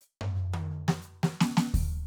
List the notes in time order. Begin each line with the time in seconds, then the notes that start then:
0.02 hi-hat pedal
0.21 floor tom
0.35 snare
0.52 hi-hat pedal, high tom
0.70 snare
0.88 snare
1.02 cross-stick, hi-hat pedal
1.23 snare
1.41 snare
1.57 snare
1.74 open hi-hat, kick